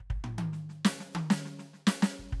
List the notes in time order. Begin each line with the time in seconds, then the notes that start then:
0.00 kick
0.10 kick
0.24 mid tom
0.38 high tom
0.53 snare
0.69 snare
0.85 snare
1.00 snare
1.13 hi-hat pedal, high tom
1.30 snare
1.45 snare
1.59 snare
1.74 snare
1.87 snare
2.02 snare
2.19 kick
2.32 kick